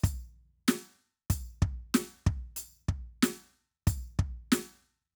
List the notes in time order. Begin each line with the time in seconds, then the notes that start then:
0.01 kick, percussion
0.05 percussion
0.68 snare, percussion
1.30 kick, percussion
1.62 kick
1.95 snare, percussion
2.27 kick
2.57 percussion
2.89 kick
3.23 snare, percussion
3.87 kick, percussion
4.19 kick
4.52 snare, percussion